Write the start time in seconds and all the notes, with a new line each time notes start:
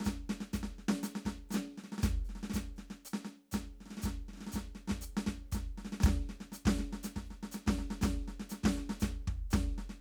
0.01 snare
0.04 kick, snare, hi-hat pedal
0.07 snare
0.30 snare
0.41 snare
0.54 kick, snare, hi-hat pedal
0.63 snare
0.79 snare
1.03 snare, hi-hat pedal
1.16 snare
1.25 kick, snare, hi-hat pedal
1.50 snare, hi-hat pedal, open hi-hat
1.55 snare
1.78 snare
1.84 snare
1.93 snare
1.98 snare
2.02 kick, snare, hi-hat pedal
2.04 snare
2.25 hi-hat pedal
2.29 snare
2.36 snare
2.43 snare
2.50 snare, hi-hat pedal
2.54 kick, snare
2.76 snare, hi-hat pedal
2.91 snare
3.05 hi-hat pedal
3.14 snare
3.25 snare
3.52 kick, snare, hi-hat pedal
3.81 snare
3.86 snare
3.97 snare
4.01 kick, snare, hi-hat pedal
4.06 snare
4.29 snare
4.34 snare
4.38 snare
4.41 snare
4.47 snare
4.51 kick, snare, hi-hat pedal
4.56 snare
4.75 snare
4.88 snare
4.90 kick, snare
5.02 hi-hat pedal
5.17 snare
5.27 kick, snare
5.52 kick, snare, hi-hat pedal
5.78 snare
5.85 snare
5.93 snare
6.01 kick, snare, hi-hat pedal
6.06 snare
6.29 snare
6.41 snare
6.52 snare, hi-hat pedal
6.66 kick, snare
6.67 snare
6.79 snare
6.93 snare
7.04 snare, hi-hat pedal
7.16 kick, snare
7.25 hi-hat pedal
7.31 snare
7.43 snare
7.52 snare, hi-hat pedal
7.67 kick, snare
7.75 hi-hat pedal
7.79 snare
7.91 snare
8.02 kick, snare, hi-hat pedal
8.04 snare
8.28 snare
8.40 snare
8.50 snare, hi-hat pedal
8.64 kick, snare
8.66 snare
8.72 hi-hat pedal
8.78 snare
8.90 snare
9.00 kick, snare, hi-hat pedal
9.28 kick, snare
9.51 kick, snare, hi-hat pedal
9.78 snare
9.90 snare